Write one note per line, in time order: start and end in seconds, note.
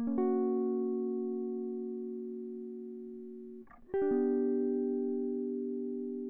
0.00 3.67 A#3
0.08 3.61 C#4
0.18 3.65 F#4
3.94 6.30 G4
4.02 6.30 D4
4.12 6.30 B3